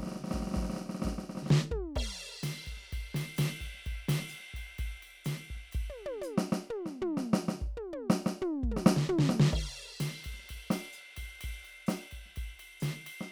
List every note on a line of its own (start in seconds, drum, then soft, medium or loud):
0.01 snare soft
0.04 snare soft
0.07 snare soft
0.13 snare soft
0.17 snare soft
0.21 snare soft
0.25 snare soft
0.29 snare soft
0.32 kick soft
0.32 snare medium
0.37 kick soft
0.37 snare soft
0.41 snare soft
0.43 snare soft
0.48 snare soft
0.52 snare soft
0.55 kick soft
0.55 snare medium
0.59 snare soft
0.63 snare soft
0.66 snare soft
0.71 snare soft
0.74 snare soft
0.77 snare soft
0.82 snare soft
0.87 snare soft
0.90 snare soft
0.95 snare soft
1.00 snare soft
1.03 kick soft
1.03 snare medium
1.08 snare medium
1.13 snare soft
1.19 snare soft
1.24 snare soft
1.30 snare soft
1.36 snare soft
1.38 snare soft
1.43 snare soft
1.47 snare soft
1.51 snare loud
1.72 kick soft
1.72 mid tom medium
1.77 kick soft
1.96 kick soft
1.96 crash loud
2.03 kick soft
2.44 snare medium
2.44 hi-hat pedal medium
2.44 ride medium
2.67 kick soft
2.67 ride soft
2.73 kick soft
2.78 snare soft
2.90 kick soft
2.90 hi-hat pedal soft
2.90 ride medium
2.99 kick soft
3.15 snare medium
3.15 ride medium
3.37 snare medium
3.37 hi-hat pedal medium
3.37 ride loud
3.46 snare soft
3.62 kick soft
3.62 ride soft
3.67 kick soft
3.75 snare soft
3.84 kick soft
3.84 hi-hat pedal soft
3.84 ride soft
3.93 kick soft
4.10 snare medium
4.10 ride loud
4.20 snare soft
4.30 hi-hat pedal medium
4.30 ride soft
4.41 snare soft
4.55 kick soft
4.55 ride soft
4.60 kick soft
4.77 kick soft
4.77 hi-hat pedal soft
4.77 ride medium
4.86 kick soft
5.03 ride soft
5.25 snare medium
5.25 hi-hat pedal medium
5.25 ride medium
5.51 kick soft
5.56 kick soft
5.56 snare soft
5.72 kick soft
5.72 hi-hat pedal soft
5.72 ride bell medium
5.82 kick soft
5.90 high tom medium
6.06 high tom medium
6.22 hi-hat pedal medium
6.22 high tom medium
6.39 snare medium
6.53 snare medium
6.71 mid tom medium
6.87 snare soft
7.02 floor tom loud
7.18 snare medium
7.34 snare medium
7.49 snare medium
7.62 kick soft
7.68 kick soft
7.77 mid tom medium
7.94 high tom medium
8.11 snare loud
8.27 snare medium
8.42 floor tom loud
8.64 kick soft
8.70 kick soft
8.70 mid tom medium
8.78 snare medium
8.87 snare loud
8.97 snare medium
9.09 floor tom loud
9.20 snare loud
9.30 snare medium
9.41 snare loud
9.53 kick soft
9.53 crash medium
9.60 kick soft
10.01 snare medium
10.01 hi-hat pedal loud
10.01 ride medium
10.25 kick soft
10.25 ride medium
10.32 kick soft
10.32 snare soft
10.40 snare soft
10.44 snare soft
10.44 hi-hat pedal soft
10.50 kick soft
10.50 ride medium
10.56 kick soft
10.71 snare medium
10.71 ride medium
10.94 hi-hat pedal medium
11.17 kick soft
11.17 ride medium
11.24 kick soft
11.41 kick soft
11.41 snare soft
11.41 hi-hat pedal soft
11.41 ride medium
11.50 kick soft
11.65 ride soft
11.88 snare medium
11.88 hi-hat pedal medium
11.88 ride medium
12.12 kick soft
12.12 ride soft
12.27 snare soft
12.35 kick soft
12.35 hi-hat pedal soft
12.35 ride medium
12.60 ride medium
12.81 snare medium
12.81 hi-hat pedal medium
12.81 ride medium
12.95 snare soft
13.07 ride medium
13.22 snare soft